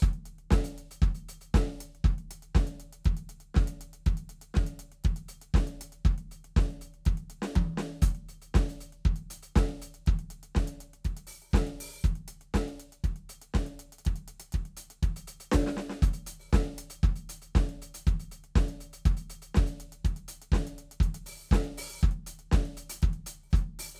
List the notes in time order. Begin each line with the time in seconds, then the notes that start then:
0.01 kick, closed hi-hat, hi-hat pedal
0.14 closed hi-hat
0.26 closed hi-hat
0.39 closed hi-hat
0.51 kick, snare
0.64 closed hi-hat
0.70 kick
0.78 closed hi-hat
0.91 closed hi-hat
1.02 kick, closed hi-hat
1.15 closed hi-hat
1.29 closed hi-hat
1.41 closed hi-hat
1.54 kick, snare
1.69 closed hi-hat
1.81 closed hi-hat
1.95 closed hi-hat
2.05 kick, closed hi-hat
2.19 closed hi-hat
2.31 closed hi-hat
2.43 closed hi-hat
2.55 kick, snare
2.67 closed hi-hat
2.76 kick
2.80 closed hi-hat
2.93 closed hi-hat
3.05 kick, closed hi-hat
3.17 closed hi-hat
3.29 closed hi-hat
3.41 closed hi-hat
3.55 kick, snare
3.68 closed hi-hat
3.78 kick, closed hi-hat
3.94 closed hi-hat
4.06 kick, closed hi-hat
4.17 closed hi-hat
4.30 closed hi-hat
4.42 closed hi-hat
4.54 kick, snare
4.67 closed hi-hat
4.78 kick, closed hi-hat
4.92 closed hi-hat
5.04 kick, closed hi-hat
5.16 closed hi-hat
5.29 closed hi-hat
5.42 closed hi-hat
5.54 kick, snare
5.67 closed hi-hat
5.81 closed hi-hat
5.92 closed hi-hat
6.05 kick, closed hi-hat
6.18 closed hi-hat
6.32 closed hi-hat
6.45 closed hi-hat
6.57 kick, snare
6.71 closed hi-hat
6.81 closed hi-hat
6.94 closed hi-hat
7.06 kick, closed hi-hat
7.18 closed hi-hat
7.30 closed hi-hat
7.42 snare
7.56 kick, high tom
7.78 snare
8.02 closed hi-hat, kick
8.15 closed hi-hat
8.29 closed hi-hat
8.42 closed hi-hat
8.55 kick, snare
8.69 closed hi-hat
8.81 closed hi-hat
8.93 closed hi-hat
9.05 kick, closed hi-hat
9.16 closed hi-hat
9.31 closed hi-hat
9.43 closed hi-hat
9.56 kick, snare
9.69 closed hi-hat
9.82 closed hi-hat
9.94 closed hi-hat
10.07 kick, closed hi-hat
10.19 closed hi-hat
10.31 closed hi-hat
10.43 closed hi-hat
10.55 kick, snare
10.68 closed hi-hat
10.81 closed hi-hat
10.94 closed hi-hat
11.05 kick, closed hi-hat
11.17 closed hi-hat
11.27 open hi-hat
11.42 open hi-hat
11.51 kick, snare, hi-hat pedal
11.67 closed hi-hat
11.81 open hi-hat
11.94 open hi-hat
12.02 kick, closed hi-hat, hi-hat pedal
12.16 closed hi-hat
12.28 closed hi-hat
12.41 closed hi-hat
12.54 kick, snare
12.68 closed hi-hat
12.80 closed hi-hat
12.93 closed hi-hat
13.04 kick, closed hi-hat
13.16 closed hi-hat
13.30 closed hi-hat
13.42 closed hi-hat
13.54 kick, snare
13.67 closed hi-hat
13.80 closed hi-hat
13.93 closed hi-hat
13.99 closed hi-hat
14.05 kick, closed hi-hat
14.16 closed hi-hat
14.28 closed hi-hat
14.40 closed hi-hat
14.53 kick, closed hi-hat
14.66 closed hi-hat
14.77 closed hi-hat
14.91 closed hi-hat
15.03 kick, closed hi-hat
15.16 closed hi-hat
15.28 closed hi-hat
15.40 closed hi-hat
15.52 kick, snare
15.67 snare
15.77 snare
15.90 snare
16.03 closed hi-hat, kick
16.14 closed hi-hat
16.27 open hi-hat
16.40 open hi-hat
16.50 kick, snare, hi-hat pedal
16.65 closed hi-hat
16.73 kick
16.78 closed hi-hat
16.90 closed hi-hat
17.04 kick, closed hi-hat
17.16 closed hi-hat
17.29 closed hi-hat
17.42 closed hi-hat
17.55 kick, snare
17.69 closed hi-hat
17.75 kick
17.82 closed hi-hat
17.95 closed hi-hat
18.07 kick, closed hi-hat
18.20 closed hi-hat
18.32 closed hi-hat
18.44 closed hi-hat
18.56 kick, snare
18.69 closed hi-hat
18.81 closed hi-hat
18.93 closed hi-hat
19.06 kick, closed hi-hat
19.17 closed hi-hat
19.30 closed hi-hat
19.42 closed hi-hat
19.55 kick, snare
19.67 closed hi-hat
19.80 closed hi-hat
19.93 closed hi-hat
20.05 kick, closed hi-hat
20.17 closed hi-hat
20.28 closed hi-hat
20.42 closed hi-hat
20.52 kick, snare
20.67 closed hi-hat
20.79 closed hi-hat
20.92 closed hi-hat
21.01 kick, closed hi-hat
21.15 closed hi-hat
21.26 open hi-hat
21.40 open hi-hat
21.49 kick, hi-hat pedal
21.53 snare
21.64 closed hi-hat
21.78 open hi-hat
21.91 open hi-hat
22.00 kick, closed hi-hat, hi-hat pedal
22.11 closed hi-hat
22.23 closed hi-hat, kick
22.39 closed hi-hat
22.52 kick, snare
22.66 closed hi-hat
22.77 closed hi-hat
22.90 closed hi-hat
23.02 kick, closed hi-hat
23.14 closed hi-hat
23.27 closed hi-hat
23.44 open hi-hat
23.51 kick, hi-hat pedal
23.55 closed hi-hat
23.79 open hi-hat
23.95 open hi-hat